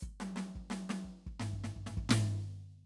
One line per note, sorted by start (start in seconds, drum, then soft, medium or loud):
0.00 kick soft
0.00 hi-hat pedal medium
0.20 snare soft
0.20 high tom medium
0.36 snare medium
0.36 high tom medium
0.56 kick soft
0.70 snare medium
0.70 closed hi-hat soft
0.70 high tom medium
0.89 snare medium
0.89 high tom medium
1.05 kick soft
1.27 kick soft
1.40 snare medium
1.40 floor tom medium
1.53 kick soft
1.64 snare soft
1.64 floor tom medium
1.76 kick soft
1.86 snare medium
1.86 floor tom medium
1.97 kick soft
2.09 snare loud
2.09 floor tom loud